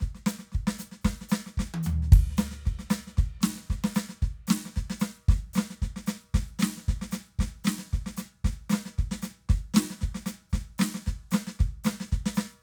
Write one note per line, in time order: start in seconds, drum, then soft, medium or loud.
0.01 kick soft
0.01 snare soft
0.15 snare soft
0.27 snare medium
0.27 hi-hat pedal medium
0.39 snare soft
0.53 kick medium
0.53 snare soft
0.68 snare medium
0.79 snare soft
0.79 hi-hat pedal medium
0.92 snare soft
1.02 kick soft
1.02 snare medium
1.02 hi-hat pedal soft
1.21 snare soft
1.29 snare loud
1.29 hi-hat pedal medium
1.47 snare soft
1.58 kick soft
1.58 snare medium
1.75 high tom loud
1.84 floor tom loud
1.84 hi-hat pedal medium
2.03 snare soft
2.13 kick loud
2.13 ride medium
2.31 snare soft
2.38 snare loud
2.38 hi-hat pedal medium
2.52 snare soft
2.66 kick medium
2.66 snare soft
2.79 snare soft
2.91 snare loud
2.91 hi-hat pedal medium
3.08 snare soft
3.18 kick medium
3.18 snare soft
3.41 snare soft
3.41 hi-hat pedal medium
3.44 snare loud
3.56 snare soft
3.70 kick soft
3.70 snare soft
3.85 snare medium
3.95 snare medium
3.95 hi-hat pedal medium
4.10 snare soft
4.23 kick medium
4.23 snare soft
4.48 snare medium
4.48 hi-hat pedal medium
4.51 snare loud
4.66 snare soft
4.77 kick soft
4.77 snare soft
4.91 snare medium
5.00 snare medium
5.00 hi-hat pedal medium
5.29 kick medium
5.29 snare medium
5.54 snare medium
5.54 hi-hat pedal medium
5.58 snare medium
5.71 snare soft
5.82 kick soft
5.82 snare soft
5.97 snare soft
6.07 snare medium
6.07 hi-hat pedal medium
6.35 kick medium
6.35 snare medium
6.60 snare medium
6.60 hi-hat pedal medium
6.63 snare loud
6.78 snare soft
6.89 kick medium
6.89 snare soft
7.02 snare medium
7.12 snare medium
7.12 hi-hat pedal medium
7.39 kick medium
7.39 snare medium
7.65 snare medium
7.65 hi-hat pedal medium
7.68 snare loud
7.79 snare soft
7.93 kick medium
7.93 snare soft
8.07 snare medium
8.17 snare medium
8.17 hi-hat pedal medium
8.45 kick medium
8.45 snare medium
8.70 snare medium
8.70 hi-hat pedal medium
8.73 snare medium
8.86 snare soft
8.99 kick medium
8.99 snare soft
9.12 snare medium
9.23 snare medium
9.23 hi-hat pedal medium
9.50 kick medium
9.50 snare medium
9.75 snare medium
9.75 hi-hat pedal medium
9.77 snare loud
9.91 snare soft
10.02 kick soft
10.02 snare soft
10.15 snare medium
10.27 snare medium
10.27 hi-hat pedal medium
10.50 kick medium
10.50 snare medium
10.50 hi-hat pedal soft
10.79 snare medium
10.79 hi-hat pedal medium
10.82 snare loud
10.95 snare medium
11.07 kick soft
11.07 snare soft
11.32 snare medium
11.32 hi-hat pedal medium
11.34 snare loud
11.48 snare medium
11.60 kick medium
11.60 snare soft
11.85 snare medium
11.85 snare loud
11.85 hi-hat pedal medium
12.01 snare medium
12.12 kick medium
12.12 snare soft
12.26 snare medium
12.35 snare medium
12.35 hi-hat pedal medium